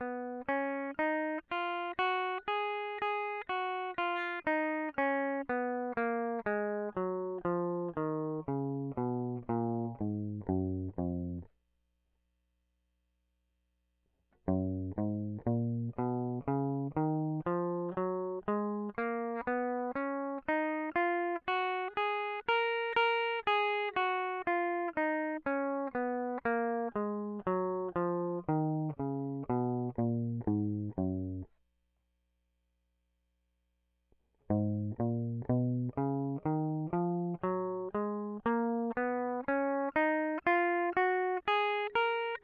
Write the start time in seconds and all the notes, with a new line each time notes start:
0.01 B3
0.49 C#4
0.99 D#4
1.52 F4
1.99 F#4
2.48 G#4
3.02 G#4
3.50 F#4
3.99 F4
4.47 D#4
4.99 C#4
5.50 B3
5.98 A#3
6.47 G#3
6.97 F#3
7.46 F3
7.98 D#3
8.49 C#3
8.99 B2
9.51 A#2
10.03 G#2
10.51 F#2
11.01 F2
14.50 F#2
15.00 G#2
15.48 A#2
16.00 B2
16.49 C#3
16.98 D#3
17.47 F3
17.98 F#3
18.49 G#3
18.99 A#3
19.48 B3
19.96 C#4
20.49 D#4
20.96 F4
21.48 F#4
21.98 G#4
22.49 A#4
22.97 A#4
23.48 G#4
23.97 F#4
24.48 F4
24.98 D#4
25.47 C#4
25.95 B3
26.46 A#3
26.96 G#3
27.48 F#3
27.97 F3
28.50 D#3
29.01 C#3
29.51 B2
30.00 A#2
30.49 G#2
31.00 F#2
34.52 G#2
35.02 A#2
35.51 B2
35.99 C#3
36.47 D#3
36.94 F3
37.44 F#3
37.95 G#3
38.47 A#3
38.98 B3
39.49 C#4
39.96 D#4
40.47 F4
40.97 F#4
41.48 G#4
41.96 A#4